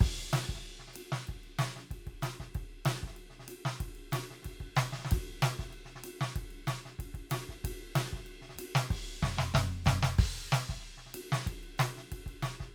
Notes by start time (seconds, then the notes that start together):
0.01 kick, ride
0.34 snare, hi-hat pedal, ride
0.49 kick
0.55 snare
0.64 ride
0.80 snare
0.88 snare
0.94 hi-hat pedal, ride
1.13 snare
1.28 kick, ride
1.44 ride
1.59 snare, hi-hat pedal, ride
1.76 snare
1.91 kick, ride
2.07 kick, crash, ride
2.22 snare, hi-hat pedal, ride
2.40 kick, snare
2.55 kick, ride
2.86 snare, hi-hat pedal, ride
3.03 kick, snare
3.13 snare, ride
3.30 snare
3.40 kick, snare
3.43 snare
3.49 hi-hat pedal, ride
3.66 snare
3.81 kick, ride
3.96 ride
4.12 snare, hi-hat pedal, ride
4.31 snare
4.43 kick, snare, ride
4.49 snare
4.60 kick, ride
4.76 snare, hi-hat pedal, ride
4.93 snare
4.99 snare
5.05 snare
5.12 kick, ride
5.43 snare, hi-hat pedal, ride
5.59 kick, snare
5.70 snare, ride
5.82 kick, snare
6.04 hi-hat pedal, ride
6.21 snare
6.36 kick, ride
6.51 ride
6.67 snare, hi-hat pedal, ride bell
6.86 snare
6.99 kick, ride
7.15 kick, ride
7.30 snare, hi-hat pedal, ride
7.49 kick, snare
7.65 kick, ride
7.96 snare, hi-hat pedal, ride
8.13 kick, snare
8.27 ride
8.42 snare
8.50 snare
8.56 kick, hi-hat pedal, ride
8.76 snare
8.91 kick, ride
9.23 kick, snare, mid tom
9.38 snare, mid tom
9.55 kick, cross-stick, snare, hi-hat pedal, mid tom
9.85 kick, snare, hi-hat pedal, mid tom
10.03 snare
10.19 kick, crash
10.52 snare, hi-hat pedal, ride
10.70 kick, snare
10.80 snare, hi-hat pedal
10.98 snare
11.07 snare
11.14 kick, hi-hat pedal, ride
11.33 snare
11.47 kick, ride
11.64 ride
11.78 snare, hi-hat pedal, ride
11.98 snare
12.12 kick, ride
12.27 kick, ride
12.43 snare, hi-hat pedal, ride
12.60 kick, snare